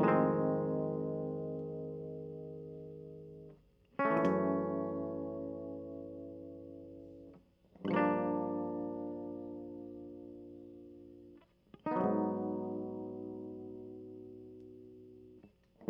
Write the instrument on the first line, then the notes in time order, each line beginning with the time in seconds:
electric guitar
0.00 F2 A2 D#3
0.05 G#3
0.09 C4
4.00 C#4
4.06 A3
4.12 E3
4.19 A#2
4.27 F#2
7.87 G2 B2
7.92 F3 A#3
7.97 D4
11.87 D#4
11.92 B3
11.97 F#3
12.02 G#2 C3